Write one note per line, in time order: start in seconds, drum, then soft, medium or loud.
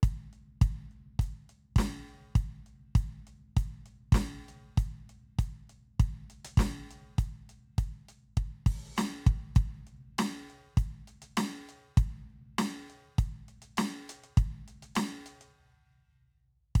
0.03 kick loud
0.03 closed hi-hat loud
0.33 closed hi-hat soft
0.61 kick loud
0.61 closed hi-hat loud
0.91 closed hi-hat soft
1.19 kick medium
1.19 closed hi-hat loud
1.49 closed hi-hat soft
1.76 kick loud
1.76 snare loud
1.76 closed hi-hat loud
2.08 closed hi-hat soft
2.35 kick loud
2.35 closed hi-hat loud
2.66 closed hi-hat soft
2.95 kick loud
2.95 closed hi-hat loud
3.27 closed hi-hat soft
3.56 kick loud
3.56 closed hi-hat loud
3.86 closed hi-hat soft
4.12 kick loud
4.12 snare loud
4.12 closed hi-hat loud
4.48 closed hi-hat medium
4.77 kick loud
4.77 closed hi-hat loud
5.09 closed hi-hat soft
5.38 kick medium
5.38 closed hi-hat loud
5.69 closed hi-hat soft
6.00 kick loud
6.00 closed hi-hat loud
6.30 closed hi-hat medium
6.45 closed hi-hat medium
6.57 kick loud
6.57 snare loud
6.57 closed hi-hat loud
6.91 closed hi-hat medium
7.18 kick medium
7.18 closed hi-hat loud
7.49 closed hi-hat medium
7.78 kick medium
7.78 closed hi-hat loud
8.09 closed hi-hat medium
8.37 kick medium
8.37 closed hi-hat medium
8.66 kick loud
8.66 open hi-hat loud
8.96 snare loud
8.96 closed hi-hat loud
8.96 hi-hat pedal loud
9.27 kick loud
9.27 open hi-hat medium
9.55 kick loud
9.55 closed hi-hat loud
9.55 hi-hat pedal medium
9.87 closed hi-hat soft
10.18 snare loud
10.18 closed hi-hat loud
10.50 closed hi-hat soft
10.77 kick loud
10.77 closed hi-hat loud
11.07 closed hi-hat medium
11.22 closed hi-hat medium
11.37 snare loud
11.37 closed hi-hat loud
11.69 closed hi-hat medium
11.97 kick loud
11.97 closed hi-hat loud
12.30 closed hi-hat soft
12.58 snare loud
12.58 closed hi-hat loud
12.90 closed hi-hat soft
13.18 kick loud
13.18 closed hi-hat loud
13.48 closed hi-hat soft
13.62 closed hi-hat medium
13.77 snare loud
13.77 closed hi-hat medium
14.09 closed hi-hat medium
14.23 closed hi-hat soft
14.37 kick loud
14.37 closed hi-hat loud
14.68 closed hi-hat medium
14.82 closed hi-hat medium
14.95 snare loud
14.95 closed hi-hat loud
15.26 closed hi-hat medium
15.41 closed hi-hat soft
16.75 closed hi-hat loud
16.75 kick loud